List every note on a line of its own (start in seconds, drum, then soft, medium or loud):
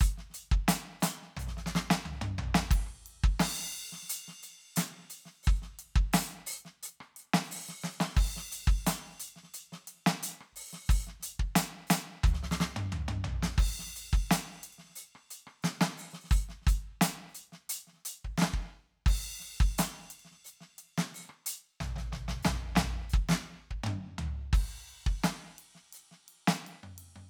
0.01 open hi-hat medium
0.01 kick loud
0.18 snare soft
0.30 snare soft
0.35 closed hi-hat medium
0.52 kick loud
0.68 closed hi-hat loud
0.68 snare loud
1.01 closed hi-hat loud
1.01 snare loud
1.01 hi-hat pedal soft
1.23 snare soft
1.37 floor tom loud
1.37 hi-hat pedal medium
1.48 snare soft
1.58 snare medium
1.66 snare medium
1.76 snare loud
1.91 snare loud
2.06 mid tom medium
2.22 high tom loud
2.39 floor tom loud
2.55 snare loud
2.71 kick loud
2.71 ride loud
2.87 cross-stick soft
3.07 ride medium
3.24 kick loud
3.40 snare loud
3.40 crash loud
3.72 closed hi-hat soft
3.93 snare soft
3.98 cross-stick soft
4.03 snare soft
4.03 hi-hat pedal soft
4.10 closed hi-hat loud
4.28 snare soft
4.43 closed hi-hat medium
4.77 closed hi-hat loud
4.77 snare loud
5.10 closed hi-hat medium
5.18 open hi-hat soft
5.26 snare soft
5.43 open hi-hat medium
5.48 kick loud
5.56 hi-hat pedal soft
5.62 snare soft
5.79 closed hi-hat medium
5.96 kick loud
6.13 open hi-hat loud
6.13 snare loud
6.47 open hi-hat loud
6.54 hi-hat pedal soft
6.65 snare soft
6.83 open hi-hat loud
6.83 hi-hat pedal medium
7.01 cross-stick medium
7.17 hi-hat pedal soft
7.17 open hi-hat medium
7.34 snare loud
7.44 hi-hat pedal soft
7.52 open hi-hat loud
7.69 snare soft
7.84 snare medium
8.01 snare loud
8.17 kick loud
8.17 crash medium
8.37 snare medium
8.37 hi-hat pedal soft
8.52 closed hi-hat medium
8.68 kick loud
8.87 closed hi-hat loud
8.87 snare loud
9.11 hi-hat pedal soft
9.20 closed hi-hat medium
9.28 closed hi-hat soft
9.36 snare soft
9.44 snare soft
9.54 closed hi-hat medium
9.73 snare medium
9.88 closed hi-hat medium
10.07 snare loud
10.23 closed hi-hat loud
10.41 cross-stick medium
10.53 open hi-hat medium
10.53 kick soft
10.73 snare soft
10.90 open hi-hat loud
10.90 kick loud
11.02 hi-hat pedal soft
11.08 snare soft
11.20 closed hi-hat loud
11.20 snare soft
11.40 kick medium
11.56 closed hi-hat loud
11.56 snare loud
11.87 closed hi-hat loud
11.87 snare loud
11.87 hi-hat pedal soft
12.24 kick loud
12.24 hi-hat pedal soft
12.24 mid tom loud
12.34 snare soft
12.43 snare medium
12.52 snare loud
12.52 hi-hat pedal soft
12.61 snare loud
12.77 high tom loud
12.93 mid tom loud
13.09 high tom loud
13.25 floor tom loud
13.43 snare loud
13.58 kick loud
13.58 crash loud
13.79 snare soft
13.87 snare soft
13.96 closed hi-hat medium
14.13 kick loud
14.31 closed hi-hat loud
14.31 snare loud
14.64 closed hi-hat medium
14.73 closed hi-hat soft
14.79 snare soft
14.84 snare soft
14.90 snare soft
14.96 open hi-hat medium
14.96 hi-hat pedal medium
15.16 cross-stick soft
15.31 closed hi-hat medium
15.47 cross-stick medium
15.63 snare loud
15.63 hi-hat pedal soft
15.81 snare loud
15.98 open hi-hat medium
16.14 snare medium
16.24 snare soft
16.32 open hi-hat medium
16.32 kick loud
16.39 hi-hat pedal soft
16.49 snare soft
16.62 snare soft
16.67 closed hi-hat medium
16.67 kick loud
17.02 closed hi-hat loud
17.02 snare loud
17.30 hi-hat pedal soft
17.35 closed hi-hat medium
17.53 snare soft
17.70 closed hi-hat loud
17.87 snare soft
17.93 snare soft
17.97 snare soft
18.06 closed hi-hat loud
18.25 kick medium
18.38 snare loud
18.42 snare loud
18.54 kick medium
19.07 open hi-hat medium
19.07 kick loud
19.07 crash loud
19.40 open hi-hat medium
19.40 snare soft
19.61 kick loud
19.72 hi-hat pedal soft
19.79 closed hi-hat loud
19.79 snare loud
20.11 closed hi-hat medium
20.20 closed hi-hat soft
20.25 snare soft
20.32 snare soft
20.45 open hi-hat medium
20.45 hi-hat pedal medium
20.61 snare soft
20.79 closed hi-hat medium
20.98 snare loud
21.15 open hi-hat medium
21.23 hi-hat pedal soft
21.30 cross-stick medium
21.47 closed hi-hat loud
21.81 snare medium
21.81 floor tom loud
21.96 snare medium
21.96 floor tom medium
22.13 snare medium
22.13 floor tom medium
22.29 snare medium
22.29 floor tom loud
22.43 snare loud
22.43 floor tom loud
22.43 hi-hat pedal medium
22.76 snare loud
22.76 floor tom loud
22.76 hi-hat pedal medium
22.84 kick soft
23.10 hi-hat pedal medium
23.14 kick loud
23.29 kick soft
23.29 snare loud
23.32 snare loud
23.71 kick medium
23.81 kick soft
23.81 high tom loud
23.87 high tom loud
24.19 mid tom loud
24.53 kick loud
24.53 crash medium
24.90 ride bell soft
25.07 kick loud
25.24 snare loud
25.24 ride medium
25.59 ride medium
25.75 snare soft
25.93 hi-hat pedal medium
25.93 ride medium
26.12 snare soft
26.29 ride soft
26.48 snare loud
26.53 hi-hat pedal medium
26.67 ride soft
26.84 high tom medium
26.98 ride medium
27.16 high tom medium